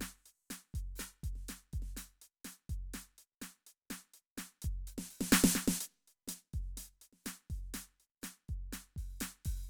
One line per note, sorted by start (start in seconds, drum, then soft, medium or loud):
0.01 closed hi-hat medium
0.01 snare soft
0.01 hi-hat pedal medium
0.26 closed hi-hat soft
0.51 closed hi-hat medium
0.51 snare soft
0.75 closed hi-hat soft
0.75 kick soft
0.96 snare soft
0.96 hi-hat pedal medium
1.00 closed hi-hat medium
1.24 closed hi-hat soft
1.24 kick soft
1.33 snare soft
1.36 snare soft
1.48 closed hi-hat medium
1.48 snare soft
1.48 hi-hat pedal soft
1.73 closed hi-hat soft
1.73 kick soft
1.80 snare soft
1.83 snare soft
1.97 open hi-hat medium
1.97 snare soft
1.97 hi-hat pedal soft
2.22 closed hi-hat soft
2.45 open hi-hat medium
2.45 snare soft
2.70 closed hi-hat soft
2.70 kick soft
2.94 open hi-hat medium
2.94 snare soft
3.19 closed hi-hat soft
3.42 closed hi-hat medium
3.42 snare soft
3.67 closed hi-hat soft
3.90 closed hi-hat medium
3.90 snare soft
4.14 closed hi-hat soft
4.38 closed hi-hat medium
4.38 snare soft
4.62 open hi-hat medium
4.62 kick soft
4.88 open hi-hat soft
4.88 hi-hat pedal soft
4.98 snare soft
5.11 open hi-hat soft
5.21 snare medium
5.33 snare loud
5.44 snare loud
5.56 snare medium
5.68 snare medium
5.68 hi-hat pedal soft
5.81 closed hi-hat loud
6.08 closed hi-hat soft
6.28 closed hi-hat loud
6.28 snare soft
6.54 kick soft
6.54 closed hi-hat soft
6.60 snare soft
6.78 open hi-hat medium
6.78 snare soft
6.78 hi-hat pedal soft
7.02 closed hi-hat soft
7.13 snare soft
7.23 closed hi-hat medium
7.23 snare soft
7.23 hi-hat pedal soft
7.51 open hi-hat soft
7.51 kick soft
7.59 snare soft
7.74 open hi-hat medium
7.74 snare soft
7.74 hi-hat pedal medium
8.00 closed hi-hat soft
8.22 closed hi-hat medium
8.22 snare soft
8.22 hi-hat pedal soft
8.49 kick soft
8.49 closed hi-hat soft
8.73 open hi-hat medium
8.73 snare soft
8.73 hi-hat pedal soft
8.97 kick soft
8.97 open hi-hat soft
9.21 open hi-hat medium
9.21 snare soft
9.21 hi-hat pedal medium
9.45 open hi-hat medium
9.45 kick soft
9.45 snare soft
9.52 kick soft